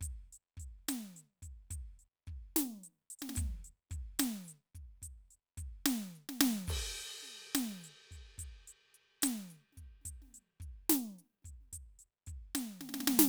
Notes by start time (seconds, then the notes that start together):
0.01 closed hi-hat, kick
0.33 closed hi-hat
0.57 closed hi-hat, kick
0.89 closed hi-hat, snare
1.15 closed hi-hat, snare
1.43 closed hi-hat, kick
1.71 closed hi-hat, kick
1.99 closed hi-hat
2.27 kick, closed hi-hat
2.56 closed hi-hat, snare
2.66 snare
2.84 closed hi-hat
3.10 closed hi-hat
3.19 open hi-hat, snare
3.30 snare
3.35 closed hi-hat, kick, snare, hi-hat pedal
3.44 kick
3.65 closed hi-hat
3.90 closed hi-hat, kick, snare
4.19 closed hi-hat, snare
4.44 closed hi-hat, hi-hat pedal
4.75 kick, closed hi-hat
5.02 closed hi-hat, kick
5.31 closed hi-hat
5.58 closed hi-hat, kick
5.86 closed hi-hat, snare
6.15 closed hi-hat
6.29 snare
6.41 snare
6.67 kick, hi-hat pedal, crash
6.74 kick
7.00 closed hi-hat
7.23 snare, closed hi-hat
7.55 closed hi-hat, snare
7.81 closed hi-hat, hi-hat pedal
8.11 closed hi-hat, kick
8.38 closed hi-hat, kick
8.68 closed hi-hat
8.94 closed hi-hat
9.23 closed hi-hat, snare
9.49 snare, closed hi-hat, hi-hat pedal
9.73 snare
9.77 kick, closed hi-hat
10.02 closed hi-hat, kick, snare
10.22 snare
10.28 snare
10.33 closed hi-hat, snare
10.60 kick, closed hi-hat
10.90 closed hi-hat, snare
11.19 snare, closed hi-hat
11.43 closed hi-hat, kick, snare
11.61 snare
11.73 closed hi-hat, kick
11.99 closed hi-hat
12.27 closed hi-hat, kick
12.55 closed hi-hat, snare
12.81 snare
12.89 snare
12.94 snare
13.01 snare
13.08 snare
13.19 snare